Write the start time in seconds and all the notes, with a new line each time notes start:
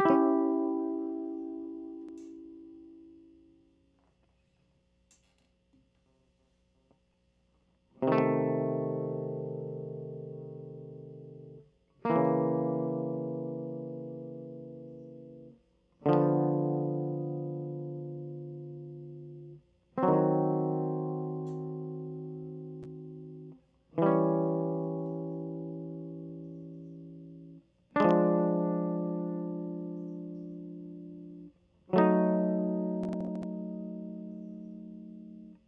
0.00 G4
0.06 E4
0.10 C#4
8.04 C3
8.09 D#3
8.13 A3
8.18 B3
12.06 A#3
12.11 E3
12.17 C#3
16.07 D3 F3
16.14 B3
19.98 C4
20.04 F#3
20.09 D#3
23.99 E3 G3
24.07 C#4
27.97 D4
28.01 G#3
28.05 F3
31.94 F#3 A3
31.98 D#4 F#5